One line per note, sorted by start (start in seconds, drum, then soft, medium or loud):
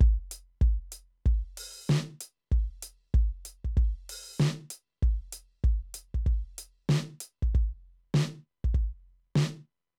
0.01 kick medium
0.32 closed hi-hat loud
0.62 kick medium
0.92 closed hi-hat loud
1.26 kick medium
1.31 crash soft
1.58 open hi-hat loud
1.89 snare loud
1.89 hi-hat pedal medium
2.21 closed hi-hat loud
2.52 kick medium
2.56 crash soft
2.83 closed hi-hat loud
3.14 kick medium
3.46 closed hi-hat loud
3.65 kick soft
3.77 kick medium
3.77 crash soft
4.10 open hi-hat loud
4.40 snare loud
4.40 hi-hat pedal medium
4.71 closed hi-hat loud
5.03 kick medium
5.08 crash soft
5.33 closed hi-hat loud
5.64 kick medium
5.95 closed hi-hat loud
6.15 kick medium
6.27 kick medium
6.27 crash soft
6.59 open hi-hat loud
6.89 snare loud
6.89 hi-hat pedal medium
7.21 closed hi-hat loud
7.43 kick medium
7.55 kick medium
8.15 snare loud
8.65 kick medium
8.75 kick medium
9.36 snare loud